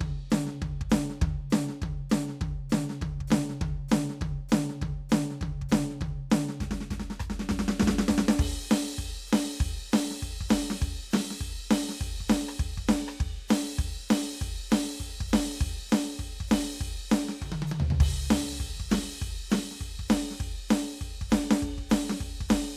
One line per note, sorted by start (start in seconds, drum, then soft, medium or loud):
0.01 kick medium
0.01 high tom loud
0.31 snare loud
0.31 hi-hat pedal medium
0.31 high tom loud
0.47 snare medium
0.62 kick medium
0.62 high tom loud
0.81 kick medium
0.90 snare loud
0.90 hi-hat pedal medium
0.90 high tom loud
1.10 snare soft
1.22 kick loud
1.22 high tom loud
1.51 snare loud
1.51 hi-hat pedal medium
1.51 high tom loud
1.69 snare soft
1.82 kick medium
1.82 high tom loud
2.10 snare loud
2.10 hi-hat pedal medium
2.10 high tom loud
2.29 snare soft
2.41 kick medium
2.41 high tom loud
2.70 snare loud
2.70 hi-hat pedal medium
2.70 high tom loud
2.90 snare medium
3.02 kick medium
3.02 high tom loud
3.21 kick medium
3.28 hi-hat pedal medium
3.28 high tom loud
3.32 snare loud
3.50 snare soft
3.61 kick medium
3.61 high tom loud
3.89 snare loud
3.89 hi-hat pedal medium
3.89 high tom loud
4.10 snare soft
4.21 kick medium
4.21 high tom loud
4.49 snare loud
4.49 hi-hat pedal medium
4.49 high tom loud
4.70 snare soft
4.82 kick medium
4.82 high tom loud
5.10 snare loud
5.10 hi-hat pedal medium
5.10 high tom loud
5.31 snare soft
5.41 kick medium
5.41 high tom loud
5.62 kick medium
5.69 snare loud
5.69 hi-hat pedal medium
5.69 high tom loud
5.90 snare soft
6.01 kick medium
6.01 high tom loud
6.31 snare loud
6.31 hi-hat pedal medium
6.31 high tom loud
6.49 snare medium
6.61 kick medium
6.61 snare medium
6.61 hi-hat pedal soft
6.71 snare medium
6.81 snare medium
6.91 kick medium
6.91 snare medium
6.91 hi-hat pedal medium
7.00 snare medium
7.10 snare medium
7.20 kick medium
7.20 cross-stick medium
7.20 hi-hat pedal medium
7.30 snare medium
7.40 snare medium
7.49 kick medium
7.49 snare loud
7.49 hi-hat pedal soft
7.59 snare loud
7.68 snare loud
7.80 kick medium
7.80 snare loud
7.80 hi-hat pedal medium
7.88 snare loud
7.99 snare loud
8.09 kick medium
8.09 snare loud
8.09 hi-hat pedal medium
8.18 snare loud
8.29 snare loud
8.39 kick loud
8.39 crash loud
8.71 snare loud
8.71 hi-hat pedal medium
8.71 crash loud
8.99 kick medium
9.27 hi-hat pedal medium
9.33 snare loud
9.33 crash loud
9.60 kick loud
9.90 snare loud
9.90 hi-hat pedal soft
9.90 crash loud
10.11 snare soft
10.23 kick medium
10.41 kick medium
10.49 snare loud
10.49 hi-hat pedal medium
10.49 crash loud
10.71 snare medium
10.82 kick loud
11.11 snare loud
11.11 hi-hat pedal medium
11.11 crash loud
11.31 snare medium
11.41 kick medium
11.71 snare loud
11.71 hi-hat pedal medium
11.71 crash loud
11.89 snare medium
12.01 kick medium
12.21 kick medium
12.29 snare loud
12.29 hi-hat pedal medium
12.29 crash loud
12.49 cross-stick medium
12.60 kick loud
12.78 kick medium
12.88 snare loud
12.88 hi-hat pedal medium
12.88 crash medium
13.08 cross-stick medium
13.20 kick loud
13.48 snare loud
13.48 hi-hat pedal medium
13.48 crash loud
13.79 kick loud
14.09 snare loud
14.09 hi-hat pedal medium
14.09 crash loud
14.42 kick medium
14.70 snare loud
14.70 hi-hat pedal medium
14.70 crash loud
15.00 kick medium
15.21 kick medium
15.28 hi-hat pedal medium
15.33 snare loud
15.33 crash loud
15.61 kick loud
15.89 snare loud
15.89 hi-hat pedal medium
15.89 crash loud
16.19 kick medium
16.41 kick medium
16.48 snare loud
16.48 hi-hat pedal medium
16.52 crash loud
16.81 kick medium
17.09 snare loud
17.09 hi-hat pedal medium
17.09 crash medium
17.29 snare medium
17.42 kick medium
17.42 high tom medium
17.52 high tom loud
17.62 high tom loud
17.68 hi-hat pedal medium
17.72 high tom loud
17.80 floor tom loud
17.91 floor tom loud
17.91 hi-hat pedal soft
18.00 kick loud
18.00 crash loud
18.29 snare loud
18.29 hi-hat pedal medium
18.29 crash loud
18.52 snare soft
18.60 kick medium
18.80 kick medium
18.89 snare loud
18.89 hi-hat pedal medium
18.89 crash loud
19.22 kick medium
19.50 snare loud
19.50 hi-hat pedal medium
19.50 crash loud
19.71 snare soft
19.81 kick medium
20.00 kick medium
20.08 snare loud
20.08 hi-hat pedal medium
20.08 crash loud
20.31 snare soft
20.40 kick medium
20.69 snare loud
20.69 hi-hat pedal medium
20.69 crash loud
21.01 kick medium
21.21 kick medium
21.29 snare loud
21.29 hi-hat pedal medium
21.29 crash medium
21.51 snare loud
21.63 kick medium
21.78 kick medium
21.90 snare loud
21.90 hi-hat pedal medium
21.90 crash loud
22.10 snare medium
22.21 kick medium
22.41 kick medium
22.49 snare loud
22.49 hi-hat pedal medium
22.49 crash loud